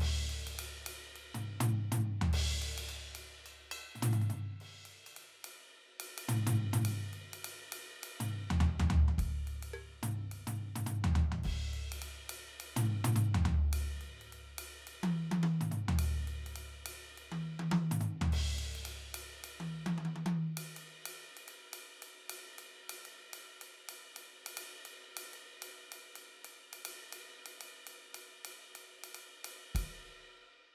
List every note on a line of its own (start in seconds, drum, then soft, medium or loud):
0.01 ride loud
0.30 ride medium
0.47 ride medium
0.59 ride loud
0.87 ride loud
1.16 ride medium
1.35 mid tom medium
1.61 mid tom loud
1.92 mid tom loud
2.22 floor tom loud
2.33 ride loud
2.62 ride medium
2.78 ride loud
2.89 ride bell medium
3.15 ride loud
3.46 ride bell medium
3.72 ride bell loud
3.96 mid tom medium
4.03 mid tom loud
4.13 mid tom medium
4.22 mid tom medium
4.30 mid tom medium
4.61 ride medium
4.86 ride medium
5.07 ride bell medium
5.17 ride medium
5.45 ride loud
6.00 ride loud
6.18 ride loud
6.29 mid tom loud
6.47 mid tom loud
6.74 mid tom loud
6.85 ride loud
7.14 ride medium
7.34 ride loud
7.45 ride loud
7.73 ride loud
8.04 ride loud
8.21 mid tom loud
8.51 floor tom loud
8.61 floor tom loud
8.80 floor tom loud
8.90 floor tom loud
9.08 floor tom medium
9.19 kick medium
9.19 ride medium
9.48 ride medium
9.63 ride medium
9.74 percussion loud
10.03 mid tom loud
10.32 ride medium
10.48 mid tom medium
10.76 mid tom medium
10.87 mid tom medium
11.05 floor tom loud
11.16 floor tom loud
11.32 floor tom medium
11.44 kick medium
11.44 ride medium
11.74 ride soft
11.92 ride loud
12.02 ride loud
12.30 ride loud
12.60 ride loud
12.77 mid tom loud
13.05 mid tom loud
13.16 mid tom loud
13.35 floor tom loud
13.46 floor tom loud
13.73 ride loud
14.01 ride medium
14.22 ride soft
14.33 ride medium
14.59 ride loud
14.88 ride medium
15.04 high tom loud
15.32 high tom loud
15.43 high tom loud
15.61 mid tom medium
15.72 mid tom medium
15.89 floor tom loud
15.99 ride loud
16.28 ride medium
16.47 ride medium
16.56 ride medium
16.86 ride loud
17.18 ride medium
17.32 high tom medium
17.60 high tom loud
17.72 high tom loud
17.92 mid tom loud
18.01 mid tom medium
18.22 floor tom loud
18.33 ride loud
18.59 ride medium
18.76 ride medium
18.86 ride loud
19.15 ride loud
19.44 ride loud
19.60 high tom medium
19.87 high tom loud
19.98 high tom medium
20.05 high tom medium
20.16 high tom medium
20.26 high tom loud
20.58 ride loud
20.77 ride medium
21.06 ride loud
21.37 ride medium
21.48 ride medium
21.74 ride loud
22.03 ride medium
22.30 ride loud
22.59 ride medium
22.90 ride loud
23.06 ride medium
23.34 ride loud
23.62 ride medium
23.89 ride loud
24.17 ride medium
24.47 ride loud
24.58 ride loud
24.86 ride medium
25.17 ride loud
25.34 ride medium
25.63 ride loud
25.92 ride loud
26.16 ride medium
26.45 ride medium
26.73 ride medium
26.86 ride loud
27.13 ride loud
27.46 ride medium
27.61 ride loud
27.87 ride medium
28.15 ride loud
28.45 ride loud
28.76 ride medium
29.04 ride medium
29.15 ride medium
29.45 ride loud
29.75 kick medium
29.75 ride loud